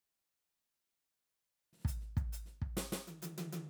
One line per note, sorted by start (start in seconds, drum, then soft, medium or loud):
1.73 snare soft
1.77 snare soft
1.80 snare soft
1.85 closed hi-hat medium
1.85 kick medium
2.01 snare soft
2.17 kick medium
2.17 closed hi-hat soft
2.32 closed hi-hat medium
2.46 snare soft
2.62 kick soft
2.77 snare medium
2.92 snare medium
3.07 high tom medium
3.22 hi-hat pedal medium
3.22 high tom medium
3.38 high tom loud
3.53 high tom loud